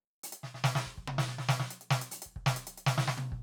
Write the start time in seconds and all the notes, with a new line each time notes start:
0.23 closed hi-hat
0.32 closed hi-hat
0.43 snare
0.54 snare
0.64 snare
0.75 snare
0.86 kick
0.98 kick
1.08 high tom
1.18 snare
1.38 snare
1.49 snare
1.60 snare
1.71 closed hi-hat
1.81 closed hi-hat
1.91 snare
2.01 closed hi-hat
2.11 closed hi-hat
2.22 kick, closed hi-hat
2.46 snare
2.56 closed hi-hat
2.67 closed hi-hat
2.78 closed hi-hat
2.86 snare
2.98 snare
3.08 snare
3.18 high tom
3.32 kick